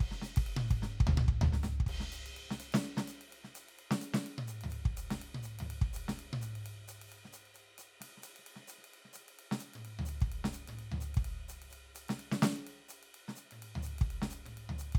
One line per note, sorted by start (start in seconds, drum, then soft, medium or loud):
0.01 kick medium
0.01 ride medium
0.11 snare soft
0.22 snare soft
0.22 hi-hat pedal medium
0.37 kick medium
0.37 ride medium
0.47 ride medium
0.57 high tom loud
0.68 kick medium
0.68 hi-hat pedal soft
0.68 ride medium
0.82 snare medium
1.01 kick medium
1.07 floor tom loud
1.18 high tom loud
1.28 kick medium
1.42 floor tom loud
1.53 snare medium
1.63 snare medium
1.63 hi-hat pedal medium
1.80 kick medium
1.87 kick medium
1.87 ride medium
2.00 snare soft
2.12 hi-hat pedal medium
2.12 ride medium
2.26 ride medium
2.37 ride medium
2.51 snare medium
2.60 hi-hat pedal medium
2.60 ride medium
2.73 snare loud
2.73 ride medium
2.83 ride soft
2.97 snare medium
3.08 hi-hat pedal medium
3.08 ride medium
3.21 ride medium
3.29 hi-hat pedal soft
3.33 ride medium
3.44 snare soft
3.55 hi-hat pedal medium
3.55 ride medium
3.69 ride soft
3.77 hi-hat pedal soft
3.91 snare medium
4.01 hi-hat pedal medium
4.01 ride medium
4.14 snare medium
4.14 ride medium
4.27 ride medium
4.38 high tom medium
4.48 hi-hat pedal medium
4.48 ride medium
4.61 floor tom medium
4.61 ride medium
4.70 hi-hat pedal soft
4.70 ride medium
4.86 kick medium
4.97 hi-hat pedal medium
4.97 ride medium
5.11 snare medium
5.11 ride medium
5.22 ride medium
5.35 high tom medium
5.43 hi-hat pedal medium
5.43 ride medium
5.59 floor tom medium
5.59 ride medium
5.71 ride medium
5.82 kick medium
5.93 hi-hat pedal medium
5.93 ride medium
6.08 snare medium
6.08 ride medium
6.19 ride medium
6.33 high tom loud
6.42 hi-hat pedal medium
6.42 ride medium
6.56 ride medium
6.64 hi-hat pedal soft
6.64 ride medium
6.88 hi-hat pedal medium
6.88 ride medium
7.02 ride medium
7.08 hi-hat pedal soft
7.12 ride medium
7.25 snare soft
7.33 hi-hat pedal medium
7.33 ride medium
7.46 ride soft
7.54 hi-hat pedal soft
7.54 ride medium
7.78 hi-hat pedal medium
7.78 ride medium
8.01 snare soft
8.01 ride medium
8.17 snare soft
8.23 hi-hat pedal medium
8.23 ride medium
8.36 snare soft
8.36 ride medium
8.47 ride medium
8.56 snare soft
8.62 snare soft
8.68 hi-hat pedal medium
8.68 ride medium
8.78 snare soft
8.85 ride medium
8.94 ride soft
9.05 snare soft
9.13 snare soft
9.13 hi-hat pedal medium
9.13 ride medium
9.29 ride medium
9.34 hi-hat pedal soft
9.39 ride medium
9.52 snare medium
9.59 hi-hat pedal medium
9.59 ride medium
9.74 high tom medium
9.74 ride medium
9.85 ride medium
9.99 floor tom medium
10.06 hi-hat pedal medium
10.06 ride medium
10.21 kick medium
10.21 ride soft
10.32 ride medium
10.45 snare medium
10.53 hi-hat pedal medium
10.53 ride medium
10.68 high tom medium
10.68 ride medium
10.79 ride soft
10.92 floor tom medium
11.01 hi-hat pedal medium
11.01 ride medium
11.15 kick medium
11.15 ride medium
11.49 hi-hat pedal medium
11.49 ride medium
11.62 ride medium
11.71 hi-hat pedal soft
11.71 ride medium
11.95 hi-hat pedal medium
11.95 ride medium
12.09 snare medium
12.09 ride medium
12.20 ride medium
12.32 snare medium
12.42 snare loud
12.42 hi-hat pedal medium
12.42 ride medium
12.56 ride soft
12.67 ride medium
12.89 hi-hat pedal medium
12.89 ride medium
13.03 ride soft
13.15 ride medium
13.28 snare soft
13.36 hi-hat pedal medium
13.36 ride soft
13.51 high tom soft
13.51 ride medium
13.63 ride medium
13.76 floor tom medium
13.83 hi-hat pedal medium
13.87 ride medium
13.99 kick medium
13.99 ride medium
14.11 ride medium
14.22 snare medium
14.30 hi-hat pedal medium
14.30 ride medium
14.46 high tom medium
14.46 ride soft
14.58 ride medium
14.70 floor tom medium
14.79 hi-hat pedal medium
14.79 ride medium
14.93 kick medium
14.93 ride medium